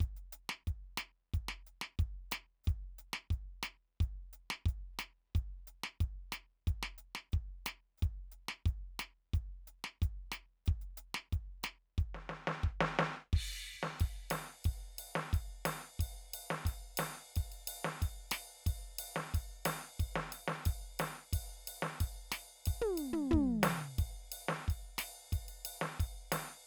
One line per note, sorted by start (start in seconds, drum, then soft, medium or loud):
0.01 kick medium
0.01 closed hi-hat soft
0.17 closed hi-hat soft
0.33 closed hi-hat medium
0.50 snare medium
0.68 kick soft
0.68 closed hi-hat soft
0.98 snare medium
0.98 closed hi-hat medium
1.34 kick medium
1.34 closed hi-hat soft
1.49 snare medium
1.67 closed hi-hat soft
1.82 snare medium
2.00 kick medium
2.00 closed hi-hat soft
2.32 snare medium
2.32 open hi-hat loud
2.64 kick medium
2.64 hi-hat pedal soft
2.69 closed hi-hat soft
2.99 closed hi-hat medium
3.14 snare medium
3.31 kick medium
3.31 closed hi-hat soft
3.63 snare medium
3.63 closed hi-hat medium
4.01 kick medium
4.01 closed hi-hat soft
4.34 closed hi-hat medium
4.51 snare medium
4.66 kick medium
4.66 closed hi-hat soft
4.99 snare medium
4.99 closed hi-hat medium
5.36 kick medium
5.36 closed hi-hat soft
5.68 closed hi-hat medium
5.84 snare medium
6.01 kick medium
6.01 closed hi-hat medium
6.33 snare medium
6.33 closed hi-hat medium
6.68 kick medium
6.68 closed hi-hat soft
6.83 snare medium
6.99 closed hi-hat medium
7.16 snare medium
7.33 kick medium
7.33 closed hi-hat soft
7.67 snare medium
7.67 open hi-hat medium
7.98 hi-hat pedal soft
8.03 kick medium
8.03 closed hi-hat soft
8.32 closed hi-hat soft
8.49 snare medium
8.66 kick medium
8.66 closed hi-hat soft
9.00 snare medium
9.00 closed hi-hat medium
9.34 kick medium
9.34 closed hi-hat soft
9.68 closed hi-hat medium
9.85 snare medium
10.02 kick medium
10.02 closed hi-hat medium
10.32 snare medium
10.32 closed hi-hat medium
10.67 kick medium
10.67 closed hi-hat medium
10.82 closed hi-hat soft
10.98 closed hi-hat medium
11.15 snare medium
11.33 kick medium
11.33 closed hi-hat soft
11.64 snare medium
11.64 closed hi-hat medium
11.99 kick medium
11.99 closed hi-hat soft
12.15 snare soft
12.30 snare soft
12.48 snare medium
12.64 kick medium
12.81 snare loud
12.99 snare loud
13.34 kick medium
13.34 crash medium
13.74 kick soft
13.83 snare medium
14.00 kick medium
14.00 ride medium
14.31 snare medium
14.31 ride medium
14.65 kick medium
14.65 ride medium
14.99 ride medium
15.16 snare medium
15.34 kick medium
15.34 ride soft
15.66 snare medium
15.66 ride medium
16.00 kick medium
16.00 ride medium
16.34 ride medium
16.51 snare medium
16.66 kick medium
16.66 ride medium
16.98 snare medium
16.98 ride loud
17.36 kick soft
17.36 ride medium
17.52 ride soft
17.68 ride loud
17.85 snare medium
18.02 kick soft
18.02 ride medium
18.32 snare medium
18.32 ride medium
18.67 kick medium
18.67 ride medium
18.99 ride loud
19.17 snare medium
19.35 kick soft
19.35 ride medium
19.66 snare medium
19.66 ride loud
20.00 kick medium
20.00 ride medium
20.16 snare medium
20.33 ride medium
20.48 snare medium
20.66 kick medium
20.66 ride medium
21.00 snare medium
21.00 ride medium
21.33 kick medium
21.33 ride medium
21.68 ride medium
21.83 snare medium
22.01 kick medium
22.01 ride medium
22.32 snare medium
22.32 ride medium
22.66 kick medium
22.66 ride medium
22.82 mid tom loud
22.98 ride medium
23.13 floor tom medium
23.31 kick medium
23.31 floor tom loud
23.64 snare loud
23.64 ride loud
23.99 kick medium
23.99 ride medium
24.32 ride medium
24.49 snare medium
24.69 kick soft
24.69 ride soft
24.99 snare medium
24.99 ride loud
25.33 kick medium
25.33 ride medium
25.49 ride soft
25.66 ride medium
25.82 snare medium
26.00 kick medium
26.00 ride medium
26.32 snare medium
26.32 ride loud